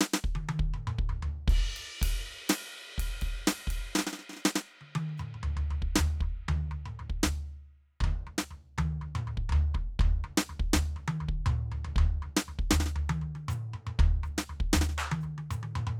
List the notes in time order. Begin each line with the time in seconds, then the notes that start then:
0.01 snare
0.13 snare
0.24 kick
0.35 high tom
0.49 high tom
0.59 kick
0.74 mid tom
0.87 mid tom
0.99 kick
1.09 floor tom
1.23 floor tom
1.48 kick, ride
1.76 ride
2.02 kick, ride
2.49 snare, ride
2.98 kick, ride
3.21 kick, ride
3.47 snare, ride
3.67 kick, ride
3.92 kick, snare, hi-hat pedal
3.99 snare
4.07 snare
4.13 snare
4.19 snare
4.29 snare
4.33 snare
4.37 snare
4.44 snare, hi-hat pedal
4.56 snare
4.81 high tom
4.95 high tom
5.09 high tom
5.17 hi-hat pedal, mid tom
5.34 mid tom
5.43 floor tom
5.57 floor tom
5.71 floor tom
5.82 kick
5.96 snare, floor tom
6.21 kick, floor tom
6.48 floor tom, high tom
6.71 floor tom
6.86 mid tom
6.99 floor tom
7.10 kick
7.23 snare, floor tom
8.00 kick, floor tom
8.04 floor tom
8.27 floor tom
8.38 snare
8.51 floor tom
8.78 floor tom, high tom
9.01 floor tom
9.15 mid tom
9.27 floor tom
9.37 kick
9.49 floor tom
9.52 floor tom
9.74 kick, floor tom
9.99 kick, floor tom
10.24 floor tom
10.37 snare
10.49 floor tom
10.60 kick
10.73 snare, floor tom
10.96 floor tom
11.08 high tom
11.20 floor tom
11.29 kick
11.46 floor tom, mid tom
11.72 floor tom
11.85 floor tom
11.96 kick, floor tom
12.22 floor tom
12.37 snare
12.48 floor tom
12.59 kick
12.71 snare, floor tom
12.80 snare
12.86 snare
12.96 floor tom
13.09 high tom
13.21 floor tom
13.35 high tom
13.48 hi-hat pedal, mid tom
13.73 mid tom
13.87 mid tom
13.99 kick, floor tom
14.23 floor tom, hi-hat pedal
14.38 snare
14.49 floor tom
14.60 kick
14.73 snare, floor tom
14.81 snare
14.89 snare
14.98 percussion
15.11 high tom
15.21 floor tom, hi-hat pedal
15.38 high tom
15.51 hi-hat pedal, mid tom
15.63 high tom
15.75 mid tom
15.87 mid tom